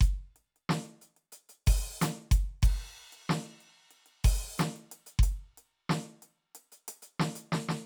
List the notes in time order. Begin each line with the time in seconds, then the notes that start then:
0.01 closed hi-hat, kick
0.36 closed hi-hat
0.56 closed hi-hat
0.69 snare
0.85 closed hi-hat
1.02 closed hi-hat
1.17 closed hi-hat
1.32 closed hi-hat
1.49 closed hi-hat
1.67 open hi-hat, kick
2.01 closed hi-hat, snare, hi-hat pedal
2.32 kick, closed hi-hat
2.63 kick, hi-hat pedal, crash
2.99 closed hi-hat
3.13 closed hi-hat
3.29 snare
3.45 closed hi-hat
3.61 closed hi-hat
3.77 closed hi-hat
3.91 closed hi-hat
4.06 closed hi-hat
4.24 open hi-hat, kick
4.58 snare, hi-hat pedal
4.76 closed hi-hat
4.92 closed hi-hat
5.07 closed hi-hat
5.19 kick
5.23 closed hi-hat
5.58 closed hi-hat
5.90 snare
6.22 closed hi-hat
6.55 closed hi-hat
6.72 closed hi-hat
6.88 closed hi-hat
7.02 closed hi-hat
7.20 snare
7.36 closed hi-hat
7.52 snare
7.69 snare